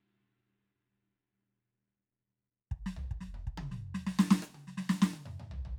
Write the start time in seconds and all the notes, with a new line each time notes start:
2.72 kick
2.87 snare
2.97 floor tom
3.11 kick
3.21 snare
3.35 mid tom
3.47 kick
3.58 high tom
3.72 snare
3.95 snare
4.07 snare
4.19 snare
4.31 snare
4.43 cross-stick
4.55 high tom
4.68 snare
4.90 snare
5.02 snare
5.14 high tom
5.26 mid tom
5.40 mid tom
5.52 floor tom
5.66 floor tom